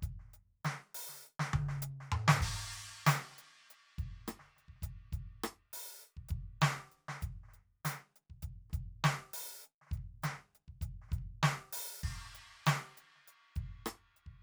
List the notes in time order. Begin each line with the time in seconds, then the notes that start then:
0.01 closed hi-hat, kick, snare
0.19 snare
0.29 snare
0.34 closed hi-hat
0.65 closed hi-hat, snare
0.86 snare
0.95 open hi-hat
1.09 snare
1.13 snare
1.23 closed hi-hat, hi-hat pedal
1.40 snare
1.53 kick, high tom
1.60 kick
1.64 kick
1.69 snare
1.82 closed hi-hat
2.00 snare
2.12 mid tom
2.28 snare
2.41 kick, crash
2.50 kick
2.54 snare
2.73 closed hi-hat
3.06 open hi-hat, snare, hi-hat pedal
3.18 snare
3.31 snare
3.38 closed hi-hat
3.69 closed hi-hat, hi-hat pedal
3.98 kick, closed hi-hat
4.27 closed hi-hat, cross-stick, hi-hat pedal
4.39 snare
4.56 snare, closed hi-hat
4.68 kick
4.76 snare
4.82 closed hi-hat, kick
5.13 closed hi-hat, kick
5.44 closed hi-hat, cross-stick
5.73 open hi-hat
6.02 hi-hat pedal, open hi-hat
6.17 kick
6.29 closed hi-hat, kick
6.61 closed hi-hat, snare
6.71 snare
6.92 open hi-hat
7.08 snare
7.21 closed hi-hat, kick, hi-hat pedal
7.44 snare
7.49 snare
7.54 closed hi-hat
7.85 open hi-hat, snare, hi-hat pedal
8.16 closed hi-hat
8.30 kick
8.43 closed hi-hat, kick
8.70 closed hi-hat, kick, cross-stick
9.04 closed hi-hat, snare
9.34 open hi-hat
9.63 hi-hat pedal
9.81 snare
9.87 snare
9.91 kick, closed hi-hat
9.97 kick
10.22 closed hi-hat, snare, hi-hat pedal
10.55 closed hi-hat
10.68 kick
10.81 closed hi-hat, kick
11.02 snare
11.09 kick, snare
11.13 closed hi-hat
11.18 kick
11.43 snare, closed hi-hat
11.73 open hi-hat
12.01 kick, hi-hat pedal, crash
12.10 kick
12.32 closed hi-hat, snare
12.66 open hi-hat, snare, hi-hat pedal
12.79 snare
12.97 closed hi-hat
13.16 snare
13.28 open hi-hat, hi-hat pedal
13.56 kick, closed hi-hat
13.62 kick
13.85 closed hi-hat, cross-stick, hi-hat pedal
14.16 closed hi-hat
14.26 kick